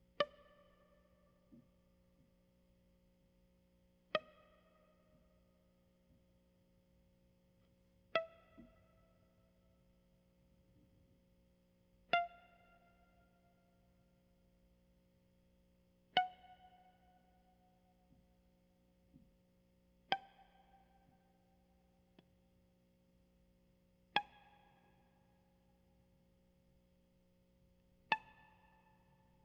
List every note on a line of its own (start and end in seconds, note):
0.21 0.28 D5
4.16 4.22 D#5
8.16 8.22 E5
12.14 12.30 F5
16.17 16.25 F#5
20.13 20.20 G5
24.17 24.23 G#5
28.12 28.19 A5